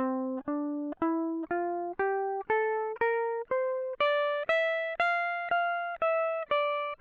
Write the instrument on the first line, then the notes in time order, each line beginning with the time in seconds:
electric guitar
0.00 C4
0.48 D4
1.02 E4
1.51 F4
2.00 G4
2.50 A4
3.02 A#4
3.52 C5
4.01 D5
4.50 E5
5.00 F5
5.52 F5
6.02 E5
6.52 D5